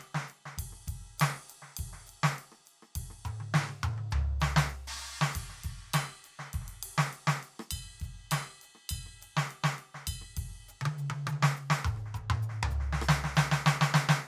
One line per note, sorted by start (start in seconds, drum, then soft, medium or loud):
0.01 ride soft
0.15 snare medium
0.27 hi-hat pedal medium
0.27 ride soft
0.46 snare soft
0.58 kick soft
0.58 hi-hat pedal medium
0.58 ride loud
0.72 cross-stick soft
0.87 kick soft
0.87 hi-hat pedal medium
0.87 ride medium
0.96 kick soft
1.18 snare loud
1.18 hi-hat pedal medium
1.18 ride loud
1.30 snare soft
1.48 hi-hat pedal medium
1.48 ride medium
1.62 snare soft
1.77 kick soft
1.77 hi-hat pedal medium
1.77 ride loud
1.93 snare soft
2.06 hi-hat pedal medium
2.06 ride soft
2.23 snare loud
2.34 hi-hat pedal medium
2.38 ride medium
2.52 cross-stick soft
2.65 hi-hat pedal medium
2.65 ride soft
2.82 cross-stick soft
2.95 kick soft
2.95 hi-hat pedal medium
2.95 ride loud
3.01 kick soft
3.04 kick soft
3.10 cross-stick soft
3.25 hi-hat pedal medium
3.25 mid tom medium
3.40 high tom medium
3.53 snare loud
3.53 hi-hat pedal medium
3.69 high tom medium
3.83 hi-hat pedal medium
3.83 mid tom loud
3.98 high tom medium
4.11 floor tom loud
4.11 hi-hat pedal medium
4.40 snare loud
4.40 hi-hat pedal loud
4.56 snare loud
4.69 hi-hat pedal medium
4.87 crash loud
4.98 hi-hat pedal medium
5.21 snare loud
5.32 kick soft
5.32 hi-hat pedal loud
5.32 ride loud
5.50 snare soft
5.58 snare soft
5.63 kick soft
5.63 hi-hat pedal medium
5.63 ride medium
5.73 kick soft
5.94 snare loud
5.94 hi-hat pedal medium
5.94 ride bell loud
6.05 snare soft
6.24 hi-hat pedal medium
6.24 ride soft
6.39 snare medium
6.53 kick soft
6.53 snare soft
6.53 hi-hat pedal medium
6.53 ride medium
6.61 kick soft
6.61 snare soft
6.64 kick soft
6.64 snare soft
6.68 snare soft
6.68 ride medium
6.83 hi-hat pedal medium
6.83 ride loud
6.98 snare loud
7.13 hi-hat pedal medium
7.13 ride medium
7.27 snare loud
7.43 hi-hat pedal medium
7.43 ride soft
7.59 cross-stick medium
7.71 kick soft
7.71 hi-hat pedal medium
7.71 ride bell loud
8.00 kick soft
8.00 hi-hat pedal medium
8.00 ride soft
8.10 kick soft
8.31 snare medium
8.31 hi-hat pedal medium
8.31 ride bell loud
8.43 snare soft
8.62 hi-hat pedal medium
8.62 ride soft
8.75 cross-stick soft
8.89 kick soft
8.89 hi-hat pedal medium
8.89 ride bell loud
8.97 kick soft
9.06 cross-stick soft
9.21 hi-hat pedal medium
9.21 ride medium
9.37 snare loud
9.49 hi-hat pedal medium
9.49 ride soft
9.64 snare loud
9.78 hi-hat pedal medium
9.78 ride soft
9.94 snare soft
10.07 kick soft
10.07 hi-hat pedal medium
10.07 ride bell loud
10.16 kick soft
10.21 cross-stick soft
10.36 kick soft
10.36 hi-hat pedal soft
10.36 ride medium
10.44 kick soft
10.68 hi-hat pedal loud
10.81 high tom loud
10.86 high tom loud
10.98 hi-hat pedal medium
11.10 high tom loud
11.27 hi-hat pedal loud
11.27 high tom loud
11.33 high tom soft
11.43 snare loud
11.56 hi-hat pedal medium
11.70 snare loud
11.85 kick soft
11.85 hi-hat pedal medium
11.85 mid tom loud
11.96 cross-stick soft
12.06 snare soft
12.14 kick soft
12.14 hi-hat pedal medium
12.14 mid tom medium
12.30 mid tom loud
12.42 hi-hat pedal medium
12.49 snare soft
12.63 floor tom loud
12.70 hi-hat pedal medium
12.80 snare soft
12.93 snare medium
13.02 cross-stick medium
13.02 hi-hat pedal soft
13.09 snare loud
13.24 snare medium
13.35 snare loud
13.35 hi-hat pedal medium
13.51 snare loud
13.65 snare loud
13.65 hi-hat pedal medium
13.81 snare loud
13.94 snare loud
13.94 hi-hat pedal medium
14.09 snare loud